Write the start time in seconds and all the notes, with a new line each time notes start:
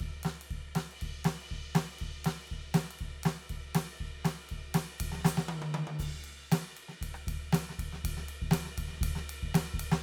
0.01 kick, ride
0.24 snare, ride
0.42 ride
0.52 kick, ride
0.76 snare, ride
0.92 ride
1.02 kick, ride
1.25 snare, ride
1.41 ride
1.52 kick
1.76 snare, ride
1.92 ride
2.00 kick, ride
2.26 snare, hi-hat pedal, ride
2.42 ride
2.48 hi-hat pedal, ride
2.52 kick
2.75 snare, ride
2.92 ride
3.00 kick, ride
3.24 snare, ride
3.44 ride
3.51 kick, ride
3.76 snare, ride
3.92 ride
3.98 kick, ride
4.26 snare, hi-hat pedal, ride
4.43 ride
4.50 kick, ride
4.75 snare, ride
4.99 kick, hi-hat pedal, ride
5.13 snare
5.19 snare
5.26 snare, hi-hat pedal
5.38 snare
5.49 high tom
5.63 high tom
5.75 high tom
5.88 high tom
6.00 kick, hi-hat pedal, crash
6.25 ride
6.53 snare, ride
6.76 hi-hat pedal, ride
6.89 snare
7.02 kick, ride
7.15 cross-stick
7.28 kick, ride
7.54 snare, ride
7.70 snare
7.77 kick, hi-hat pedal, ride
7.94 snare
8.05 kick, ride
8.18 snare
8.30 ride
8.43 kick
8.52 snare, ride
8.66 snare
8.79 kick, ride
8.89 snare
8.93 snare
8.96 snare
9.02 kick, ride
9.16 snare
9.30 ride
9.44 kick
9.55 snare, ride
9.75 kick
9.81 ride
9.93 snare